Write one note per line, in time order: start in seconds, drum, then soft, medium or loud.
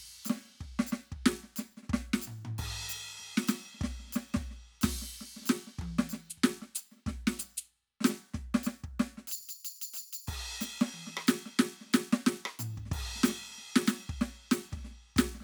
0.26 snare soft
0.26 percussion loud
0.31 snare loud
0.36 snare soft
0.42 snare soft
0.46 snare soft
0.49 snare soft
0.53 snare soft
0.62 kick medium
0.62 snare soft
0.80 snare loud
0.88 percussion loud
0.94 snare medium
1.13 kick medium
1.27 snare loud
1.44 snare soft
1.57 snare medium
1.57 percussion loud
1.78 snare soft
1.84 snare soft
1.88 kick medium
1.88 snare soft
1.92 snare soft
1.95 snare loud
2.15 snare loud
2.23 percussion loud
2.28 floor tom medium
2.46 floor tom medium
2.60 kick medium
2.60 ride loud
2.90 percussion loud
3.20 kick soft
3.20 snare soft
3.39 snare loud
3.49 snare loud
3.49 percussion loud
3.75 snare soft
3.80 kick medium
3.80 snare soft
3.83 snare soft
3.85 snare medium
4.01 snare soft
4.05 snare soft
4.08 snare soft
4.11 snare soft
4.11 percussion loud
4.17 snare medium
4.35 kick medium
4.35 snare loud
4.52 snare soft
4.83 kick medium
4.83 snare loud
4.83 percussion loud
4.83 crash loud
5.03 snare soft
5.22 snare soft
5.37 snare soft
5.43 snare soft
5.46 snare soft
5.46 percussion loud
5.49 snare soft
5.49 snare loud
5.68 snare soft
5.80 kick medium
5.80 high tom medium
6.00 snare loud
6.10 snare medium
6.10 percussion loud
6.31 floor tom medium
6.39 kick soft
6.45 snare loud
6.63 snare soft
6.76 percussion loud
6.76 floor tom loud
6.93 snare soft
6.97 snare soft
7.08 kick medium
7.08 snare medium
7.28 snare loud
7.40 percussion loud
7.40 floor tom loud
7.58 floor tom loud
8.02 snare medium
8.06 snare loud
8.06 percussion loud
8.10 snare medium
8.14 snare soft
8.19 snare soft
8.24 snare soft
8.28 snare soft
8.33 kick medium
8.33 cross-stick soft
8.33 snare medium
8.56 snare loud
8.65 snare medium
8.65 percussion loud
8.85 kick medium
9.01 snare loud
9.19 snare soft
9.29 percussion loud
9.33 percussion loud
9.50 percussion medium
9.66 percussion loud
9.83 percussion loud
9.95 percussion loud
9.98 percussion loud
10.14 percussion loud
10.29 kick medium
10.29 ride loud
10.62 snare medium
10.62 percussion loud
10.82 snare loud
10.95 high tom soft
11.08 snare soft
11.18 high tom loud
11.29 snare loud
11.29 percussion loud
11.47 snare soft
11.60 snare loud
11.82 snare soft
11.87 snare soft
11.91 snare soft
11.94 snare soft
11.94 snare loud
11.94 percussion loud
12.14 snare loud
12.28 snare loud
12.47 high tom loud
12.60 floor tom medium
12.60 percussion loud
12.78 kick soft
12.87 snare soft
12.93 kick medium
12.93 ride loud
13.17 snare soft
13.20 snare soft
13.22 snare soft
13.25 snare loud
13.25 percussion loud
13.29 snare medium
13.42 snare soft
13.45 snare soft
13.47 snare soft
13.50 snare soft
13.52 snare soft
13.59 snare soft
13.77 snare loud
13.88 snare loud
13.88 percussion loud
14.10 kick medium
14.22 snare loud
14.53 snare loud
14.53 percussion loud
14.73 kick medium
14.73 snare soft
14.78 snare soft
14.82 snare soft
14.85 snare soft
15.17 kick medium
15.17 snare loud
15.17 percussion loud
15.36 snare soft
15.42 snare soft